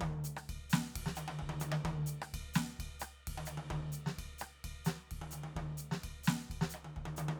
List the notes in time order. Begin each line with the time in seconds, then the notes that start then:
0.01 kick, high tom
0.24 hi-hat pedal
0.37 cross-stick
0.49 kick, ride bell
0.56 kick
0.70 snare, hi-hat pedal
0.91 hi-hat pedal
0.96 kick, ride
1.06 snare
1.16 hi-hat pedal, high tom
1.28 high tom
1.39 kick, high tom
1.49 high tom
1.60 hi-hat pedal, high tom
1.72 high tom
1.85 kick, high tom
2.06 hi-hat pedal
2.22 cross-stick
2.34 kick, ride bell
2.54 snare, hi-hat pedal
2.80 kick, ride bell
2.87 kick
3.00 cross-stick, hi-hat pedal
3.27 kick, ride
3.38 high tom
3.46 hi-hat pedal, high tom
3.58 high tom
3.70 kick, high tom
3.92 hi-hat pedal
4.06 snare
4.19 kick, ride bell
4.39 cross-stick, hi-hat pedal
4.64 kick, ride bell
4.85 snare, hi-hat pedal
5.11 kick, ride
5.22 high tom
5.31 hi-hat pedal, high tom
5.44 high tom
5.56 kick, high tom
5.77 hi-hat pedal
5.92 snare
6.04 kick, ride bell
6.24 hi-hat pedal
6.28 snare
6.50 kick, ride bell
6.61 snare
6.70 hi-hat pedal
6.74 high tom
6.85 high tom
6.96 kick, high tom
7.06 high tom
7.17 hi-hat pedal, high tom
7.29 high tom